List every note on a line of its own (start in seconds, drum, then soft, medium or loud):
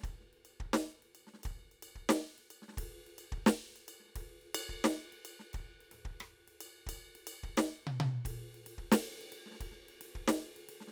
0.01 kick soft
0.01 snare soft
0.05 ride bell soft
0.21 snare soft
0.34 ride soft
0.46 ride bell soft
0.61 kick soft
0.74 snare loud
0.74 ride bell soft
1.03 ride soft
1.16 ride bell soft
1.28 snare soft
1.34 snare soft
1.40 snare soft
1.44 kick medium
1.44 ride bell soft
1.58 snare soft
1.63 snare soft
1.72 ride bell soft
1.83 ride bell medium
1.96 kick soft
2.10 snare loud
2.10 ride bell medium
2.39 snare soft
2.39 ride soft
2.51 ride bell soft
2.63 snare soft
2.69 snare soft
2.73 snare soft
2.78 kick soft
2.78 ride medium
3.07 ride soft
3.19 ride bell medium
3.33 kick medium
3.47 snare loud
3.47 ride bell soft
3.77 ride bell soft
3.89 ride bell medium
4.01 snare soft
4.05 snare soft
4.09 snare soft
4.16 kick soft
4.16 ride medium
4.29 snare soft
4.42 floor tom soft
4.42 ride soft
4.55 ride bell loud
4.70 kick soft
4.85 snare loud
4.85 ride soft
5.13 ride soft
5.26 ride bell medium
5.40 snare soft
5.54 kick soft
5.54 ride bell soft
5.70 snare soft
5.81 ride soft
5.92 snare soft
5.92 ride soft
5.92 floor tom soft
6.06 kick soft
6.21 cross-stick medium
6.21 floor tom soft
6.21 ride soft
6.49 ride soft
6.61 ride bell medium
6.87 kick soft
6.87 ride bell medium
7.16 ride soft
7.28 ride bell medium
7.44 kick soft
7.58 snare loud
7.58 ride bell medium
7.88 mid tom loud
8.01 mid tom loud
8.26 kick soft
8.26 ride medium
8.55 ride soft
8.61 snare soft
8.67 ride medium
8.79 kick soft
8.92 snare loud
8.92 ride loud
9.22 snare soft
9.22 ride soft
9.33 ride medium
9.47 snare soft
9.52 snare soft
9.54 snare soft
9.61 kick soft
9.61 ride medium
9.72 snare soft
9.77 snare soft
9.89 ride soft
10.02 ride medium
10.16 kick soft
10.29 snare loud
10.29 ride medium
10.57 ride soft
10.70 ride medium
10.81 snare soft
10.88 snare soft